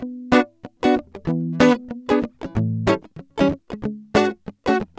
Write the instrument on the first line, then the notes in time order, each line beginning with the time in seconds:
acoustic guitar
0.01 B3
0.33 B3 D4 F#4 B4
0.85 B3 D4 F#4
1.26 E3 B3
1.61 B3 D4 B4
2.11 B3 D4 G#4
2.46 E3
2.56 A2 E3
2.88 G3 C#4 E4 A4
3.38 G3 C#4 E4 A4
3.43 E3
3.74 G#3
3.85 G#3
4.16 G#3 D4 F#4 B4
4.68 A3 F#4